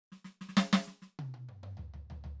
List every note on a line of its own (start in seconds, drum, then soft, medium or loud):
0.12 snare soft
0.24 snare soft
0.41 snare medium
0.49 snare soft
0.57 snare loud
0.73 snare loud
0.82 hi-hat pedal medium
0.87 snare soft
1.02 snare soft
1.19 high tom medium
1.34 high tom medium
1.49 mid tom soft
1.63 mid tom medium
1.77 floor tom medium
1.94 floor tom soft
2.10 floor tom medium
2.24 floor tom medium